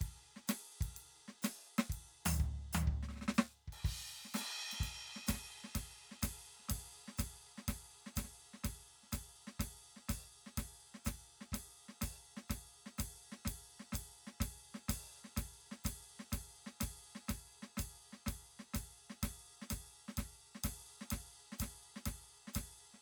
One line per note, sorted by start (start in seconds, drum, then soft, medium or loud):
0.01 kick soft
0.01 ride medium
0.36 snare soft
0.48 snare medium
0.48 hi-hat pedal loud
0.48 ride loud
0.81 kick soft
0.81 ride medium
0.93 hi-hat pedal soft
0.93 ride medium
1.28 snare soft
1.42 snare medium
1.42 hi-hat pedal loud
1.42 ride loud
1.78 snare medium
1.78 ride medium
1.90 kick soft
1.90 ride medium
2.25 open hi-hat loud
2.25 floor tom loud
2.40 kick soft
2.73 open hi-hat loud
2.73 floor tom loud
2.87 kick soft
3.03 snare soft
3.09 snare soft
3.12 snare soft
3.16 snare soft
3.21 snare soft
3.28 snare medium
3.34 hi-hat pedal medium
3.38 snare medium
3.68 kick soft
3.73 ride medium
3.85 kick medium
3.85 crash medium
4.25 snare soft
4.34 snare medium
4.34 hi-hat pedal loud
4.34 ride loud
4.39 snare soft
4.72 snare soft
4.72 ride medium
4.80 kick soft
4.80 snare soft
4.80 ride medium
5.16 snare soft
5.27 kick soft
5.27 snare medium
5.27 hi-hat pedal loud
5.27 ride loud
5.33 snare soft
5.64 snare soft
5.74 kick soft
5.74 snare soft
5.74 hi-hat pedal soft
5.74 ride loud
6.11 snare soft
6.22 kick soft
6.22 snare medium
6.22 hi-hat pedal loud
6.22 ride loud
6.59 snare soft
6.69 kick soft
6.69 snare soft
6.69 ride loud
6.74 snare soft
7.08 snare soft
7.18 kick soft
7.18 snare soft
7.18 hi-hat pedal loud
7.18 ride loud
7.58 snare soft
7.68 kick soft
7.68 snare soft
7.68 ride loud
8.06 snare soft
8.16 kick soft
8.16 snare soft
8.16 hi-hat pedal loud
8.16 ride loud
8.24 snare soft
8.54 snare soft
8.64 kick soft
8.64 snare soft
8.64 ride loud
9.03 snare soft
9.12 kick soft
9.12 snare soft
9.12 hi-hat pedal loud
9.12 ride loud
9.47 snare soft
9.60 kick soft
9.60 snare soft
9.60 hi-hat pedal soft
9.60 ride loud
9.96 snare soft
10.09 kick soft
10.09 snare soft
10.09 hi-hat pedal medium
10.09 ride loud
10.46 snare soft
10.58 kick soft
10.58 snare soft
10.58 ride loud
10.94 snare soft
11.05 kick soft
11.05 snare medium
11.05 hi-hat pedal loud
11.05 ride medium
11.41 snare soft
11.52 kick soft
11.52 snare soft
11.52 ride loud
11.89 snare soft
12.02 kick soft
12.02 snare soft
12.02 hi-hat pedal medium
12.02 ride loud
12.37 snare soft
12.48 kick soft
12.48 snare soft
12.48 hi-hat pedal soft
12.48 ride medium
12.86 snare soft
12.98 kick soft
12.98 snare soft
12.98 hi-hat pedal medium
12.98 ride loud
13.32 snare soft
13.45 kick soft
13.45 snare soft
13.45 ride loud
13.80 snare soft
13.93 kick soft
13.93 snare soft
13.93 hi-hat pedal medium
13.93 ride loud
14.27 snare soft
14.41 kick soft
14.41 snare medium
14.41 ride loud
14.75 snare soft
14.89 kick soft
14.89 snare medium
14.89 hi-hat pedal loud
14.89 ride loud
15.24 snare soft
15.37 kick soft
15.37 snare soft
15.37 ride loud
15.71 snare soft
15.84 kick soft
15.84 snare soft
15.84 hi-hat pedal loud
15.84 ride loud
16.20 snare soft
16.31 kick soft
16.31 snare soft
16.31 hi-hat pedal soft
16.31 ride loud
16.66 snare soft
16.81 kick soft
16.81 snare medium
16.81 hi-hat pedal loud
16.81 ride loud
17.15 snare soft
17.27 kick soft
17.27 snare medium
17.27 hi-hat pedal soft
17.27 ride medium
17.63 snare soft
17.77 kick soft
17.77 snare soft
17.77 hi-hat pedal loud
17.77 ride loud
18.13 snare soft
18.26 kick soft
18.26 snare soft
18.26 hi-hat pedal soft
18.26 ride medium
18.59 snare soft
18.74 kick soft
18.74 snare soft
18.74 hi-hat pedal medium
18.74 ride loud
19.10 snare soft
19.21 kick soft
19.21 snare medium
19.21 hi-hat pedal soft
19.21 ride loud
19.62 snare soft
19.70 kick soft
19.70 snare soft
19.70 hi-hat pedal medium
19.70 ride loud
20.08 snare soft
20.17 kick soft
20.17 snare soft
20.17 ride medium
20.55 snare soft
20.64 kick soft
20.64 snare soft
20.64 hi-hat pedal medium
20.64 ride loud
21.01 snare soft
21.11 kick soft
21.11 snare soft
21.11 ride loud
21.52 snare soft
21.59 kick soft
21.59 snare soft
21.59 hi-hat pedal medium
21.59 ride loud
21.96 snare soft
22.06 kick soft
22.06 snare soft
22.06 ride loud
22.47 snare soft
22.54 kick soft
22.54 snare soft
22.54 hi-hat pedal loud
22.54 ride loud
22.94 snare soft